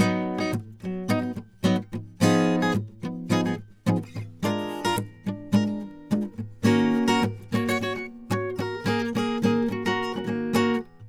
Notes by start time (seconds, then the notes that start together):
0.00 F#3 B3 D#4
0.42 B3 D#4
0.86 F#3 B3
1.11 B3 D#4
1.21 D#4
1.66 F#3 B3 D#4
1.95 F3
2.23 F3 B3 D#4 G#4
2.62 D#4 G#4
3.05 F3 B3 D#4
3.32 F3 B3 D#4 G#4
3.43 D#4
3.48 G#4
3.88 F3 B3 D#4 G#4
4.44 G#3 D4 F4 A#4
4.86 F4 A#4
5.28 G#3 D4 F4
5.54 G#3 D4 F4 A#4
5.66 F4 A#4
6.12 G#3 D4 F4
6.40 A#3
6.64 D#3 A#3 C#4 F#4 A#4
7.09 F#4 A#4
7.24 A#3
7.54 A#3 C#4 F#4 C#5
7.70 F#4 C#5
7.83 C#4 F#4 C#5
7.95 F#4 C#5
8.32 C#4 F#4 C#5
8.61 C#4 F#4 A#4
8.86 D3 A#3 C#4 G#4
8.90 A#4
9.17 A#3 C#4 G#4 A#4
9.44 D#3 A#3 C#4 G#4
9.48 A#4
9.70 A#3 C#4 F#4
9.87 C#4 F#4 A#4
10.14 F#4
10.19 C#4
10.26 D#3 A#3
10.31 C#4
10.55 A#3 C#4 F#4 A#4